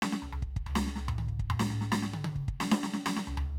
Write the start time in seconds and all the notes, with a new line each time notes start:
0.02 snare
0.12 snare
0.22 floor tom
0.32 floor tom
0.42 kick
0.56 kick
0.66 floor tom
0.75 snare
0.86 snare
0.96 snare
1.08 mid tom
1.18 high tom
1.28 kick
1.39 kick
1.50 mid tom
1.59 snare
1.70 snare
1.81 snare
1.92 snare
2.02 snare
2.13 high tom
2.24 high tom
2.35 kick
2.48 kick
2.60 snare
2.71 snare
2.83 snare
2.93 snare
3.06 snare
3.16 snare
3.27 floor tom
3.37 floor tom